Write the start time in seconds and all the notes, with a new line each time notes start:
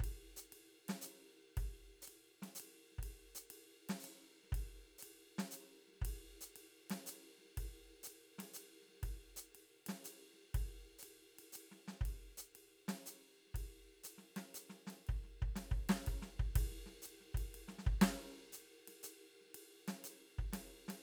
0.01 kick, ride
0.37 hi-hat pedal
0.53 ride
0.89 snare, ride
1.02 hi-hat pedal
1.07 ride
1.57 kick, ride
2.03 hi-hat pedal
2.08 ride
2.43 snare, ride
2.56 hi-hat pedal
2.61 ride
2.92 snare
2.99 kick
3.04 ride
3.36 hi-hat pedal
3.51 ride
3.90 snare, ride
4.01 hi-hat pedal
4.05 ride
4.44 snare
4.53 kick, ride
4.99 hi-hat pedal
5.03 ride
5.39 snare, ride
5.52 hi-hat pedal
5.56 ride
5.88 snare
5.92 snare
5.95 snare
6.02 kick, snare, ride
6.41 hi-hat pedal
6.56 ride
6.91 snare, ride
7.07 hi-hat pedal, ride
7.39 snare
7.45 snare
7.58 kick, ride
8.04 hi-hat pedal
8.08 ride
8.39 snare, ride
8.54 hi-hat pedal, ride
8.82 snare
8.89 snare
8.94 snare
8.96 snare
9.03 kick, ride
9.37 hi-hat pedal
9.56 ride
9.87 snare, ride
10.05 hi-hat pedal, ride
10.34 snare
10.38 snare
10.40 snare
10.44 snare
10.55 kick, ride
10.99 hi-hat pedal
11.04 ride
11.39 ride
11.53 hi-hat pedal, ride
11.72 snare
11.88 snare
12.01 kick
12.06 ride
12.38 hi-hat pedal
12.56 ride
12.89 snare, ride
13.07 hi-hat pedal, ride
13.47 snare
13.50 snare
13.55 kick, ride
14.04 hi-hat pedal, ride
14.19 snare
14.37 snare, ride
14.55 hi-hat pedal, ride
14.70 snare
14.88 snare, ride
15.07 kick, ride
15.24 snare
15.42 kick
15.56 snare, ride
15.72 kick
15.90 snare, ride
16.07 kick, ride
16.23 snare
16.40 kick
16.56 kick, ride
16.71 snare
16.87 snare
17.03 hi-hat pedal, ride
17.21 snare
17.35 kick, ride
17.55 ride
17.69 snare
17.79 snare
17.87 kick
18.02 snare, ride
18.53 hi-hat pedal, ride
18.88 snare, ride
19.04 hi-hat pedal, ride
19.41 snare
19.45 snare
19.47 snare
19.55 ride
19.88 snare, ride
20.05 hi-hat pedal, ride
20.39 kick
20.53 snare, ride
20.89 snare, ride